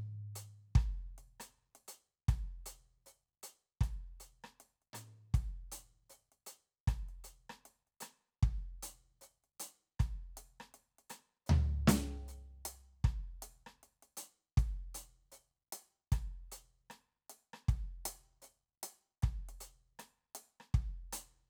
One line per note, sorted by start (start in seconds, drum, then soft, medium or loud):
0.36 closed hi-hat medium
0.75 kick medium
0.75 cross-stick medium
1.18 closed hi-hat soft
1.40 closed hi-hat medium
1.40 cross-stick medium
1.75 closed hi-hat soft
1.88 closed hi-hat medium
2.28 kick medium
2.28 cross-stick medium
2.28 closed hi-hat soft
2.66 open hi-hat medium
3.06 closed hi-hat soft
3.06 hi-hat pedal medium
3.43 closed hi-hat medium
3.81 kick medium
3.81 cross-stick medium
3.81 closed hi-hat soft
4.20 closed hi-hat medium
4.44 cross-stick medium
4.60 closed hi-hat soft
4.82 closed hi-hat soft
4.93 closed hi-hat medium
4.93 cross-stick medium
4.93 high tom soft
5.34 kick medium
5.34 closed hi-hat soft
5.72 open hi-hat medium
6.10 hi-hat pedal medium
6.14 closed hi-hat soft
6.32 closed hi-hat soft
6.46 closed hi-hat medium
6.87 kick medium
6.87 cross-stick medium
6.87 closed hi-hat soft
7.09 closed hi-hat soft
7.24 closed hi-hat medium
7.50 cross-stick medium
7.65 closed hi-hat soft
7.87 closed hi-hat soft
8.00 closed hi-hat medium
8.00 cross-stick medium
8.43 kick medium
8.43 closed hi-hat soft
8.83 open hi-hat loud
9.21 closed hi-hat soft
9.21 hi-hat pedal medium
9.44 closed hi-hat soft
9.60 closed hi-hat loud
10.00 kick medium
10.00 cross-stick medium
10.00 closed hi-hat soft
10.37 closed hi-hat medium
10.60 cross-stick medium
10.74 closed hi-hat soft
10.99 closed hi-hat soft
11.10 open hi-hat medium
11.10 cross-stick medium
11.46 floor tom loud
11.46 hi-hat pedal soft
11.87 closed hi-hat loud
11.87 snare loud
12.28 hi-hat pedal medium
12.65 closed hi-hat loud
13.04 kick medium
13.04 cross-stick medium
13.42 closed hi-hat medium
13.66 cross-stick medium
13.83 closed hi-hat soft
14.03 closed hi-hat soft
14.17 closed hi-hat loud
14.57 kick medium
14.57 closed hi-hat soft
14.95 open hi-hat medium
15.32 closed hi-hat soft
15.32 hi-hat pedal medium
15.72 closed hi-hat medium
16.12 kick medium
16.12 cross-stick medium
16.12 closed hi-hat medium
16.52 closed hi-hat medium
16.90 cross-stick medium
16.90 closed hi-hat soft
17.30 closed hi-hat medium
17.53 cross-stick medium
17.68 kick medium
17.68 closed hi-hat soft
18.05 open hi-hat loud
18.42 closed hi-hat soft
18.42 hi-hat pedal medium
18.83 closed hi-hat loud
19.22 kick medium
19.22 cross-stick soft
19.22 closed hi-hat soft
19.49 closed hi-hat soft
19.61 closed hi-hat medium
19.99 cross-stick medium
19.99 closed hi-hat medium
20.35 closed hi-hat medium
20.60 cross-stick soft
20.74 kick medium
20.74 closed hi-hat soft
21.13 open hi-hat loud
21.13 cross-stick medium